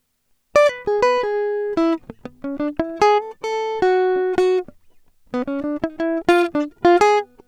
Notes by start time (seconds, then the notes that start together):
0.56 D5
0.70 B4
0.88 G#4
1.03 B4
1.24 G#4
1.78 E4
2.26 B3
2.45 C#4
2.61 D4
2.80 E4
3.02 G#4
3.19 A4
3.45 A4
3.83 F#4
4.39 F#4
5.34 B3
5.49 C#4
5.60 D4
5.84 D#4
6.01 E4
6.29 F4
6.56 D4
6.85 F4
6.98 F4 G#4